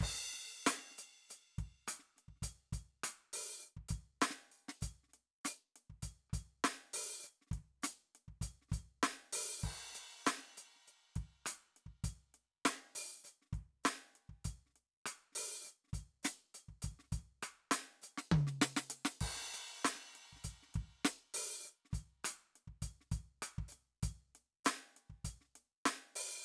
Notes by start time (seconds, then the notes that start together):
0.01 kick, crash
0.09 kick
0.14 snare
0.33 closed hi-hat
0.66 open hi-hat, snare, hi-hat pedal
0.78 snare
0.91 snare
0.98 closed hi-hat
1.29 closed hi-hat, hi-hat pedal
1.58 kick, closed hi-hat
1.87 closed hi-hat, cross-stick, hi-hat pedal
1.99 snare
2.16 snare, closed hi-hat
2.28 kick
2.36 snare
2.42 closed hi-hat, kick
2.72 closed hi-hat, kick
3.03 closed hi-hat, cross-stick
3.33 open hi-hat
3.62 hi-hat pedal, open hi-hat
3.77 kick
3.89 closed hi-hat, kick
4.21 closed hi-hat, snare
4.30 snare
4.51 open hi-hat
4.68 snare
4.81 closed hi-hat, kick, hi-hat pedal
5.03 snare
5.08 snare
5.13 closed hi-hat
5.44 open hi-hat, snare, hi-hat pedal
5.76 closed hi-hat
5.90 kick
6.02 closed hi-hat, kick
6.30 closed hi-hat, kick, cross-stick
6.64 closed hi-hat, snare
6.93 open hi-hat
7.23 hi-hat pedal
7.41 snare
7.47 snare
7.51 kick, closed hi-hat
7.57 kick
7.82 closed hi-hat, snare, hi-hat pedal
8.15 closed hi-hat
8.28 kick
8.41 closed hi-hat, kick
8.62 snare
8.69 kick, snare
8.73 closed hi-hat
8.78 kick
9.03 snare, closed hi-hat
9.33 open hi-hat
9.61 kick, hi-hat pedal, crash
9.69 kick
9.92 closed hi-hat, snare
10.26 open hi-hat, snare, hi-hat pedal
10.38 snare
10.57 closed hi-hat
10.76 snare
10.87 open hi-hat, hi-hat pedal
11.15 kick, closed hi-hat
11.22 kick
11.45 closed hi-hat, cross-stick, hi-hat pedal
11.76 closed hi-hat
11.86 kick
12.04 closed hi-hat, kick
12.34 closed hi-hat
12.65 closed hi-hat, snare
12.95 open hi-hat
13.24 closed hi-hat, hi-hat pedal
13.42 snare
13.45 snare
13.50 kick, snare
13.54 closed hi-hat
13.58 kick
13.84 closed hi-hat, snare, hi-hat pedal
14.15 closed hi-hat
14.29 kick
14.44 closed hi-hat, kick
14.52 kick
14.66 snare
14.69 snare
14.76 closed hi-hat
15.06 closed hi-hat, cross-stick
15.32 open hi-hat, snare
15.64 closed hi-hat, hi-hat pedal
15.84 snare
15.87 snare
15.92 closed hi-hat, kick, snare
15.99 kick
16.23 closed hi-hat, snare, hi-hat pedal
16.54 closed hi-hat
16.68 kick
16.82 closed hi-hat, kick
16.86 snare
16.92 kick
16.99 snare
17.03 snare
17.11 closed hi-hat, kick, snare
17.18 kick
17.42 closed hi-hat, cross-stick
17.71 open hi-hat, snare
18.02 closed hi-hat, hi-hat pedal
18.18 snare
18.31 kick, high tom
18.39 kick
18.47 snare
18.61 snare
18.76 snare
18.90 closed hi-hat
19.05 snare
19.21 kick, crash
19.28 kick
19.36 snare
19.41 snare
19.47 snare
19.54 closed hi-hat
19.84 open hi-hat, snare, hi-hat pedal
19.95 snare
20.15 closed hi-hat
20.32 kick, snare
20.44 closed hi-hat, kick
20.52 kick
20.62 snare
20.68 snare
20.73 kick, snare, closed hi-hat
20.82 kick
20.85 kick
21.05 closed hi-hat, snare
21.34 open hi-hat
21.64 hi-hat pedal
21.85 snare
21.90 closed hi-hat, kick, snare
21.99 kick
22.24 closed hi-hat, cross-stick, hi-hat pedal
22.55 closed hi-hat
22.67 kick
22.82 closed hi-hat, kick
23.01 snare
23.06 snare
23.11 closed hi-hat, kick
23.18 kick
23.42 closed hi-hat, cross-stick
23.58 kick
23.68 closed hi-hat, hi-hat pedal
24.03 closed hi-hat, kick
24.09 kick
24.35 closed hi-hat
24.64 closed hi-hat, snare, hi-hat pedal
24.96 closed hi-hat
25.10 kick
25.24 closed hi-hat, kick
25.32 kick
25.41 snare
25.44 snare
25.55 closed hi-hat
25.85 closed hi-hat, snare
26.12 open hi-hat, snare